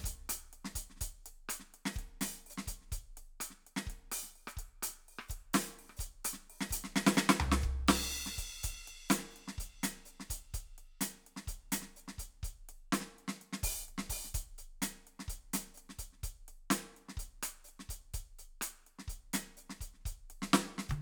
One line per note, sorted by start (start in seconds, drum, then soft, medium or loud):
0.00 kick soft
0.00 hi-hat pedal soft
0.06 closed hi-hat medium
0.11 kick soft
0.30 closed hi-hat loud
0.30 cross-stick medium
0.53 closed hi-hat soft
0.65 snare medium
0.76 closed hi-hat loud
0.76 kick soft
0.90 snare soft
0.97 snare soft
1.00 closed hi-hat loud
1.00 kick soft
1.00 snare soft
1.08 kick soft
1.26 closed hi-hat medium
1.49 closed hi-hat loud
1.49 cross-stick medium
1.60 snare soft
1.75 closed hi-hat soft
1.86 snare medium
1.93 kick soft
1.93 hi-hat pedal soft
1.99 kick soft
1.99 closed hi-hat soft
2.21 open hi-hat loud
2.21 snare medium
2.47 hi-hat pedal medium
2.47 open hi-hat soft
2.58 snare medium
2.68 closed hi-hat medium
2.68 kick soft
2.82 snare soft
2.87 snare soft
2.91 closed hi-hat medium
2.91 kick soft
2.91 snare soft
2.99 kick soft
3.18 closed hi-hat soft
3.41 closed hi-hat loud
3.41 cross-stick medium
3.51 snare soft
3.67 closed hi-hat soft
3.77 snare medium
3.84 kick soft
3.84 hi-hat pedal soft
3.90 closed hi-hat soft
4.12 open hi-hat loud
4.12 cross-stick medium
4.24 snare soft
4.36 open hi-hat soft
4.48 cross-stick medium
4.48 hi-hat pedal medium
4.57 kick soft
4.57 closed hi-hat medium
4.83 closed hi-hat loud
4.83 cross-stick medium
5.09 open hi-hat soft
5.19 cross-stick medium
5.29 kick soft
5.29 closed hi-hat medium
5.29 hi-hat pedal soft
5.54 open hi-hat loud
5.54 snare loud
5.79 open hi-hat soft
5.90 cross-stick soft
5.97 closed hi-hat medium
5.97 kick soft
5.97 hi-hat pedal soft
6.25 open hi-hat loud
6.25 cross-stick medium
6.34 snare soft
6.50 open hi-hat soft
6.61 snare medium
6.69 closed hi-hat loud
6.69 kick soft
6.69 hi-hat pedal soft
6.84 snare medium
6.96 snare loud
7.07 snare loud
7.13 hi-hat pedal medium
7.18 snare loud
7.30 snare loud
7.40 floor tom loud
7.52 snare medium
7.62 kick medium
7.62 hi-hat pedal soft
7.71 kick soft
7.74 kick soft
7.88 snare loud
7.88 crash loud
8.13 closed hi-hat soft
8.27 snare medium
8.38 closed hi-hat medium
8.38 kick soft
8.64 closed hi-hat loud
8.64 kick soft
8.71 kick soft
8.71 snare soft
8.75 snare soft
8.88 closed hi-hat soft
9.09 closed hi-hat loud
9.09 snare loud
9.09 hi-hat pedal soft
9.19 snare soft
9.31 hi-hat pedal soft
9.37 closed hi-hat soft
9.48 snare medium
9.58 closed hi-hat medium
9.58 kick soft
9.66 kick soft
9.84 closed hi-hat loud
9.84 snare medium
10.06 closed hi-hat soft
10.06 hi-hat pedal soft
10.20 snare soft
10.30 closed hi-hat loud
10.30 kick soft
10.54 closed hi-hat medium
10.54 kick soft
10.60 kick soft
10.79 closed hi-hat soft
11.01 closed hi-hat loud
11.01 snare medium
11.27 closed hi-hat soft
11.37 snare medium
11.48 closed hi-hat medium
11.48 kick soft
11.73 closed hi-hat loud
11.73 snare medium
11.82 snare soft
11.97 hi-hat pedal soft
12.08 snare soft
12.19 closed hi-hat medium
12.19 kick soft
12.43 closed hi-hat medium
12.43 kick soft
12.69 closed hi-hat soft
12.93 closed hi-hat medium
12.93 snare medium
13.01 snare soft
13.19 closed hi-hat soft
13.28 snare medium
13.42 closed hi-hat soft
13.53 snare medium
13.64 open hi-hat loud
13.64 kick medium
13.64 snare soft
13.71 kick soft
13.76 kick soft
13.82 hi-hat pedal soft
13.89 closed hi-hat soft
13.99 snare medium
14.10 open hi-hat loud
14.10 kick soft
14.25 snare soft
14.25 hi-hat pedal soft
14.35 closed hi-hat loud
14.35 kick soft
14.42 kick soft
14.59 closed hi-hat medium
14.82 closed hi-hat loud
14.82 snare medium
15.07 closed hi-hat soft
15.20 snare soft
15.28 closed hi-hat medium
15.28 kick soft
15.54 closed hi-hat loud
15.54 snare medium
15.75 closed hi-hat soft
15.75 hi-hat pedal soft
15.90 snare soft
15.99 closed hi-hat medium
15.99 kick soft
16.13 snare soft
16.19 snare soft
16.22 closed hi-hat medium
16.22 kick soft
16.22 snare soft
16.49 closed hi-hat soft
16.71 closed hi-hat loud
16.71 snare loud
16.97 closed hi-hat soft
17.09 snare soft
17.17 closed hi-hat medium
17.17 kick soft
17.43 closed hi-hat loud
17.43 cross-stick medium
17.65 hi-hat pedal soft
17.69 closed hi-hat soft
17.80 snare soft
17.90 closed hi-hat medium
17.90 kick soft
18.14 closed hi-hat medium
18.14 kick soft
18.21 kick soft
18.39 closed hi-hat soft
18.62 closed hi-hat loud
18.62 cross-stick medium
18.87 closed hi-hat soft
18.99 snare soft
19.08 closed hi-hat medium
19.08 kick soft
19.34 closed hi-hat loud
19.34 snare medium
19.57 closed hi-hat soft
19.57 hi-hat pedal soft
19.70 snare soft
19.81 closed hi-hat medium
19.81 kick soft
19.94 snare soft
20.01 snare soft
20.06 closed hi-hat medium
20.06 kick soft
20.12 kick soft
20.31 closed hi-hat soft
20.43 snare medium
20.54 snare loud
20.79 snare medium
20.89 kick soft
20.89 hi-hat pedal soft
20.89 high tom loud
20.96 kick soft